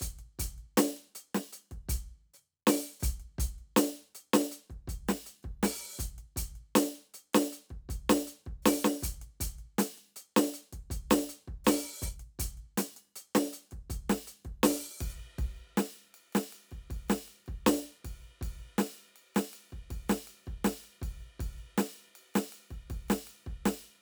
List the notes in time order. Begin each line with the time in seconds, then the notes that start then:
0.01 closed hi-hat, kick, hi-hat pedal
0.19 closed hi-hat
0.40 closed hi-hat, kick
0.59 closed hi-hat
0.78 closed hi-hat, snare
0.97 closed hi-hat
1.16 closed hi-hat
1.35 snare, closed hi-hat
1.53 closed hi-hat
1.72 kick, closed hi-hat
1.89 closed hi-hat, kick
2.34 hi-hat pedal
2.68 open hi-hat, snare
3.00 closed hi-hat, kick, hi-hat pedal
3.20 closed hi-hat
3.39 closed hi-hat, kick
3.59 closed hi-hat
3.77 closed hi-hat, snare
3.97 closed hi-hat
4.15 closed hi-hat
4.34 snare, closed hi-hat
4.52 closed hi-hat
4.70 kick, closed hi-hat
4.88 closed hi-hat, kick
5.09 snare, closed hi-hat
5.27 closed hi-hat
5.44 kick, closed hi-hat
5.64 open hi-hat, snare
5.99 closed hi-hat, kick, hi-hat pedal
6.19 closed hi-hat
6.37 closed hi-hat, kick
6.56 closed hi-hat
6.76 closed hi-hat, snare
6.96 closed hi-hat
7.15 closed hi-hat
7.34 snare, closed hi-hat
7.53 closed hi-hat
7.70 kick, closed hi-hat
7.90 closed hi-hat, kick
8.10 snare, closed hi-hat
8.28 closed hi-hat
8.46 kick, closed hi-hat
8.63 open hi-hat, snare, hi-hat pedal
8.85 snare
9.01 closed hi-hat, kick, hi-hat pedal
9.22 closed hi-hat
9.41 closed hi-hat, kick
9.59 closed hi-hat
9.79 closed hi-hat, snare
9.98 closed hi-hat
10.17 closed hi-hat
10.37 snare
10.54 closed hi-hat
10.73 kick, closed hi-hat
10.91 closed hi-hat, kick
11.11 snare, closed hi-hat
11.30 closed hi-hat
11.48 kick, closed hi-hat
11.65 open hi-hat, snare, hi-hat pedal
12.03 open hi-hat, kick, hi-hat pedal
12.20 closed hi-hat
12.40 closed hi-hat, kick
12.58 closed hi-hat
12.78 closed hi-hat, snare
12.97 closed hi-hat
13.16 closed hi-hat
13.36 snare, closed hi-hat
13.53 closed hi-hat
13.72 kick, closed hi-hat
13.90 closed hi-hat, kick
14.10 snare, closed hi-hat
14.28 closed hi-hat
14.45 kick, closed hi-hat
14.64 open hi-hat, snare
15.01 kick, ride
15.10 hi-hat pedal
15.20 ride
15.39 kick, ride
15.57 ride
15.78 snare, ride
16.15 ride
16.33 snare, ride
16.53 ride
16.72 kick, ride
16.91 kick, ride
17.09 snare, ride
17.29 ride
17.47 kick, ride
17.67 snare, ride
18.05 kick, ride
18.25 ride
18.42 kick, ride
18.60 ride
18.79 snare, ride
18.98 ride
19.17 ride
19.35 snare, ride
19.54 ride
19.71 kick, ride
19.91 kick, ride
20.10 snare, ride
20.28 ride
20.47 kick, ride
20.65 snare, ride
20.85 ride
21.02 kick, ride
21.21 ride
21.40 kick, ride
21.59 ride
21.78 snare, ride
21.97 ride
22.16 ride
22.35 snare, ride
22.53 ride
22.71 kick, ride
22.91 kick, ride
23.09 snare, ride
23.28 ride
23.47 kick, ride
23.66 snare, ride